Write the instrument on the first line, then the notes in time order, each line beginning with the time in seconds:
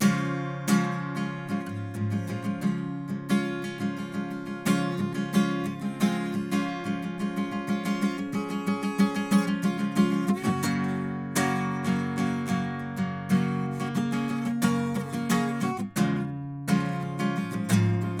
acoustic guitar
0.00 C#3 F3 G#3 C#4 F4
0.69 C#3 F3 G#3 C#4 F4
1.17 F3 G#3 C#4 F4
1.49 C#3 F3 G#3 C#4 F4
1.62 F3
1.67 G#2
1.95 G#2 A#2 F3 G#3
2.11 A2 F3 G#3 C#4 F4
2.29 A#2 F3 G#3 C#4 F4
2.44 C#3 F3 G#3 C#4 F4
2.63 C#3 F3 G#3 C#4 F4
3.09 F3 G#3 C#4
3.17 C#3
3.30 F3 G#3 C#4 F4
3.63 F3 G#3 C#4
3.79 C#3 F3 G#3 C#4 F4
3.98 F3 G#3 C#4 F4
4.13 F3 G#3 C#4 F4
4.25 G#3
4.32 C#4 F4
4.46 G#3 C#4 F4
4.67 C#3 F3 G#3 C#4 F4
4.98 F3 G#3 C#4 F4
5.13 F3 G#3 C#4 F4
5.34 C#3 F3 G#3 C#4 F4
5.65 F3 G#3 C#4 F4
5.80 F3 G#3 C4 F4
6.01 F3 G#3 C4 F4
6.21 C#4
6.33 F3 G#3 C#4 F4
6.52 C#3 F3 G#3 C#4 F4
6.85 C#3 F3 G#3 C#4 F4
7.04 F3 G#3 C#4
7.20 C#3 F3 G#3 C#4 F4
7.37 F3 G#3 C#4 F4
7.52 F3 G#3 C#4 F4
7.68 F3 G#3 C#4 F4
7.86 F3 G#3 C#4 F4
8.03 F3 G#3 C#4 F4
8.16 F3 G#3 C#4 G#4
8.34 F3 G#3 C#4 G#4
8.50 F3 G#3 C#4 G#4
8.68 G#3 C#4 G#4
8.82 G#3 C#4 G#4
8.99 F3 G#3 C#4 G#4
9.15 F3 G#3 C#4 G#4
9.32 F3 G#3 C#4 G#4
9.48 F3 G#3 C#4 F4
9.64 C#3 F3 G#3 C#4 F4
9.78 C#3 F3 G#3 C#4 F4
9.96 C#3 F3 G#3 C#4 F4
10.11 F3 G#3 C#4 F4
10.29 G#3 C4 F#4
10.45 F#2 C#3 E3 A3 C#4 F#4
10.63 F#2 C#3 F#3 A#3
11.36 F#2 C#3 F#3 A#3 C#4 F#4
11.85 C#3 F#3 A#3 C#4
11.89 F#2
12.17 C#3 F#3 A#3 C#4 F#4
12.48 F#2 C#3 F#3 A#3 C#4 F#4
12.81 F#3 A#3
12.98 F#2 C#3 F#3 A#3
13.30 F#2 C#3 F#3 A#3 C#4 F#4
13.80 A#3 C#4 F#4
13.96 C#3 A#3 D#4 G#4
14.13 A#3 C#4 G#4
14.30 A#3 C#4 G#4
14.46 A#3 C#4 A#4
14.62 F#2 C#3 A#3 C#4 A#4
14.96 A#3 C#4 A#4
15.13 A#3 C#4 G#4
15.31 C#3 A#3 C#4 G#4
15.62 A#3 C#4 F#4
15.80 G#3 B3
15.98 C#3 G#3 C#4 F4
16.69 C#3 F3 G#3 C#4 F4
17.02 G#3 C#4 F4
17.20 C#3 F3 G#3 C#4 F4
17.34 F3 G#3 C#4 F4
17.51 G#2 A#2 F3 G#3 C#4 F4
17.71 A2 F3 G#3
18.02 G#3 C#4 F4